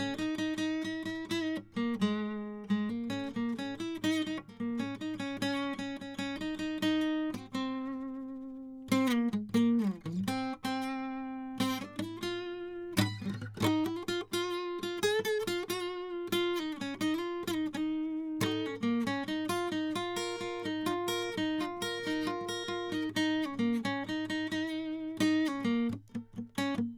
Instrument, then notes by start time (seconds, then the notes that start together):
acoustic guitar
0.00 C#4
0.20 D#4
0.40 D#4
0.60 D#4
0.85 D#4
1.05 E4
1.33 E4
1.78 A#3
2.03 G#3
2.72 G#3
2.92 A#3
3.11 C#4
3.38 A#3
3.60 C#4
3.82 E4
4.05 D#4
4.18 D#4
4.29 D#4
4.62 A#3
4.81 C#4
5.03 D#4
5.21 C#4
5.43 C#4
5.81 C#4
6.03 C#4
6.21 C#4
6.43 D#4
6.61 D#4
6.84 D#4
7.36 C4
7.56 C4
8.93 C4
9.09 A#3
9.35 G#3
9.56 A#3
10.07 E3
10.29 C4
10.66 C4
11.62 C4
11.84 D4
12.01 E4
12.24 F4
13.66 D#4
13.87 E4
13.97 F4
14.10 F4
14.35 F4
14.85 F4
15.04 G#4
15.26 G#4 A4
15.36 G#4
15.49 F4
15.71 F#4
16.34 F4
16.58 D#4
16.83 C#4
17.02 D#4
17.16 F4
17.49 D#4
17.76 D#4
18.43 D#4
18.68 C#4
18.85 A#3
19.08 C#4
19.30 D#4
19.51 F4
19.73 D#4
19.97 F4
20.18 A#4
20.43 F4
20.67 D#4
20.88 F4
21.10 A#4
21.39 D#4
21.63 F4
21.84 A#4
22.09 D#4
22.29 F4
22.50 A#4
22.70 F4
22.94 D#4
23.18 D#4
23.45 C#4
23.61 A#3
23.86 C#4
24.11 D#4
24.32 D#4
24.54 D#4
25.22 D#4
25.50 C#4
25.66 A#3
26.60 C#4
26.80 A#3